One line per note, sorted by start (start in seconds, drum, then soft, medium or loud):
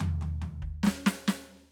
0.01 floor tom loud
0.01 high tom loud
0.22 floor tom medium
0.22 high tom medium
0.42 floor tom medium
0.42 high tom medium
0.62 kick soft
0.84 snare loud
0.87 snare loud
1.07 snare loud
1.28 snare loud